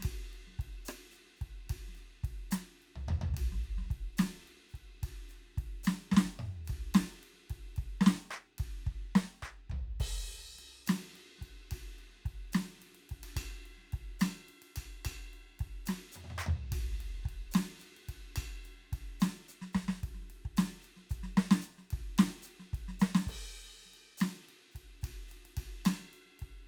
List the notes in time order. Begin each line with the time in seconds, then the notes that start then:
0.01 snare, ride
0.06 kick
0.12 kick
0.34 ride
0.48 snare
0.53 snare
0.60 kick, ride
0.66 kick
0.86 cross-stick, hi-hat pedal, ride
1.12 hi-hat pedal
1.17 ride
1.37 snare, hi-hat pedal
1.42 kick, ride
1.71 kick, ride
1.77 kick
1.89 snare
1.95 snare, hi-hat pedal, ride
2.25 kick, ride
2.31 kick
2.52 snare, hi-hat pedal, ride
2.83 ride
2.97 floor tom
3.09 kick, floor tom
3.22 floor tom
3.35 kick, ride
3.41 kick
3.53 snare
3.65 ride
3.79 snare
3.84 snare
3.88 kick, snare
3.93 ride
3.98 kick
4.18 snare, hi-hat pedal, ride
4.43 hi-hat pedal
4.49 ride
4.70 hi-hat pedal
4.75 kick, ride
5.04 kick, ride
5.10 kick
5.30 hi-hat pedal, ride
5.59 kick, ride
5.65 kick
5.85 snare, hi-hat pedal, ride
6.13 kick, snare
6.18 snare
6.26 snare
6.40 mid tom
6.53 snare
6.58 snare
6.61 snare
6.64 snare, hi-hat pedal
6.69 kick, snare, ride
6.77 kick
6.95 snare, ride
7.24 ride
7.34 snare
7.40 snare
7.51 kick, ride
7.57 kick
7.77 kick, ride
7.85 kick
8.02 snare
8.07 snare
8.14 snare
8.32 percussion
8.59 kick, ride
8.67 kick
8.82 snare
8.85 kick, snare
8.93 kick
8.98 kick
9.16 snare
9.43 kick, percussion
9.71 kick, floor tom
10.01 kick, crash
10.07 kick
10.55 snare
10.60 ride
10.87 snare, hi-hat pedal, ride
11.14 snare, hi-hat pedal, ride
11.39 kick, snare
11.44 ride
11.72 kick, ride
11.78 kick
12.00 ride
12.26 kick, ride
12.53 snare, hi-hat pedal, ride
12.63 snare
12.80 snare, hi-hat pedal, ride
12.87 snare
12.93 snare, ride
12.99 snare
13.10 kick, ride
13.24 ride
13.37 kick, ride bell
13.43 kick
13.67 ride
13.78 snare
13.81 snare
13.94 kick, ride
14.00 kick
14.20 snare, hi-hat pedal, ride bell
14.48 hi-hat pedal, ride
14.55 snare
14.63 ride
14.77 kick, ride bell
15.06 kick, ride bell
15.13 kick
15.34 ride
15.60 kick, ride
15.68 kick
15.87 snare, hi-hat pedal, ride
16.13 hi-hat pedal, mid tom
16.25 mid tom
16.31 mid tom
16.39 percussion, hi-hat pedal
16.47 floor tom
16.73 kick, ride
16.84 kick
16.93 snare
17.02 ride
17.26 kick, ride
17.34 kick
17.52 snare, hi-hat pedal, ride
17.80 snare, hi-hat pedal, ride
17.88 snare
17.93 snare
17.97 snare, ride
18.07 kick, hi-hat pedal, ride
18.37 kick, ride bell
18.45 kick
18.65 hi-hat pedal, ride
18.94 kick, ride
19.21 snare, hi-hat pedal, ride
19.29 snare
19.49 hi-hat pedal, ride
19.63 snare
19.74 kick, snare, hi-hat pedal
19.89 snare
19.99 hi-hat pedal
20.04 kick, ride
20.11 kick
20.15 snare
20.23 snare
20.31 ride
20.46 kick
20.58 snare, hi-hat pedal, ride
20.70 snare
20.83 hi-hat pedal, ride
20.98 snare
21.11 kick, hi-hat pedal, ride
21.19 kick
21.24 snare
21.38 snare
21.52 snare
21.62 hi-hat pedal, ride bell
21.79 snare
21.92 kick, ride
22.01 kick
22.19 snare, ride
22.43 hi-hat pedal
22.49 ride
22.61 snare
22.74 kick, ride
22.81 kick
22.89 snare
23.01 snare, hi-hat pedal
23.16 snare
23.28 kick, crash
23.35 kick
23.87 snare
23.95 ride
24.19 snare, hi-hat pedal, ride
24.50 ride
24.73 kick, hi-hat pedal
24.77 ride
25.02 kick, hi-hat pedal, ride
25.10 kick
25.29 hi-hat pedal, ride
25.46 ride
25.57 kick, snare, ride
25.86 snare, hi-hat pedal, ride bell
25.97 snare
26.14 hi-hat pedal, ride
26.26 snare
26.40 kick, ride